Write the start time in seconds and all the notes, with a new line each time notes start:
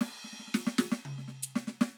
0.02 snare, ride
0.24 snare
0.33 snare
0.40 snare
0.48 snare
0.55 snare
0.67 snare
0.79 snare
0.92 snare
1.05 mid tom
1.19 snare
1.28 snare
1.43 floor tom
1.56 snare
1.68 snare
1.81 snare